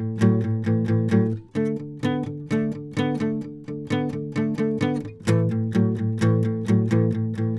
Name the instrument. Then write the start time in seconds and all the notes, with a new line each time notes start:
acoustic guitar
0.00 A2
0.22 A2 F#3
0.42 A2
0.68 A2 E3
0.90 A2 E3
1.13 A2 F#3
1.56 D3 A3 D4
1.81 D3
2.04 D3 B3
2.25 D3 B3
2.52 D3 A3 D4
2.73 D3
2.98 D3 B3
3.17 A3
3.22 D3 D4
3.43 D3
3.66 D3 A3
3.92 D3 B3
4.11 D3 A3
4.37 D3 A3
4.59 D3 A3
4.82 D3 B3
5.28 A2 E3 A3
5.51 A2 E3
5.76 A2 F#3 G3
5.97 A2 F#3
6.23 A2 E3 A3
6.45 E3
6.70 A2 F#3 G#3
6.92 A2 E3 A3
7.12 A2
7.38 A2 E3